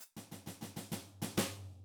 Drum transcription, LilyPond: \new DrumStaff \drummode { \time 4/4 \tempo 4 = 130 \tuplet 3/2 { hhp8 <tomfh sn>8 <tomfh sn>8 <tomfh sn>8 <tomfh sn>8 <tomfh sn>8 <sn tomfh>8 r8 <tomfh sn>8 } <tomfh sn>4 | }